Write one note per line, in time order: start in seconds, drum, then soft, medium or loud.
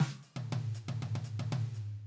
0.00 snare medium
0.23 percussion soft
0.36 high tom medium
0.36 percussion soft
0.52 high tom loud
0.75 percussion medium
0.88 high tom loud
0.88 percussion soft
1.02 high tom medium
1.15 high tom medium
1.24 percussion medium
1.39 high tom medium
1.52 high tom loud
1.74 percussion soft